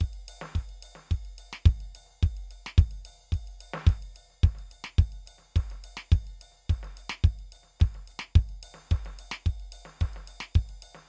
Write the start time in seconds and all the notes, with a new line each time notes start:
0.01 kick, ride
0.14 ride
0.29 hi-hat pedal, ride
0.42 snare
0.56 kick, ride
0.70 ride
0.83 hi-hat pedal, ride
0.96 snare
1.12 kick, ride
1.25 ride
1.39 hi-hat pedal, ride
1.53 snare
1.66 kick, ride
1.81 ride
1.95 hi-hat pedal, ride
2.07 snare
2.23 kick, ride
2.37 ride
2.51 hi-hat pedal, ride
2.67 snare
2.78 kick, ride
2.91 ride
3.06 hi-hat pedal, ride
3.33 kick, ride
3.48 ride
3.61 hi-hat pedal, ride
3.74 snare
3.87 kick, ride
4.03 ride
4.15 hi-hat pedal, ride
4.31 snare
4.44 kick, snare, ride
4.56 snare, ride
4.71 hi-hat pedal, ride
4.85 snare
4.99 kick, ride
5.13 ride
5.26 hi-hat pedal, ride
5.39 snare
5.56 kick, snare, ride
5.71 snare, ride
5.83 hi-hat pedal, ride
5.97 snare
6.12 kick, ride
6.27 ride
6.41 hi-hat pedal, ride
6.53 snare
6.70 kick, snare, ride
6.84 snare, ride
6.98 hi-hat pedal, ride
7.10 snare
7.24 kick, ride
7.39 ride
7.53 hi-hat pedal, ride
7.64 snare
7.81 kick, snare, ride
7.95 snare, ride
8.08 hi-hat pedal, ride
8.20 snare
8.36 kick, hi-hat pedal, ride
8.49 ride
8.63 hi-hat pedal, ride
8.75 snare
8.91 kick, snare, hi-hat pedal, ride
9.05 snare, ride
9.19 hi-hat pedal, ride
9.32 snare
9.45 kick, hi-hat pedal, ride
9.60 ride
9.73 hi-hat pedal, ride
9.86 snare
10.00 kick, snare, hi-hat pedal, ride
10.14 snare, ride
10.28 hi-hat pedal, ride
10.41 snare
10.54 kick, hi-hat pedal, ride
10.66 snare, ride
10.83 hi-hat pedal, ride
10.95 snare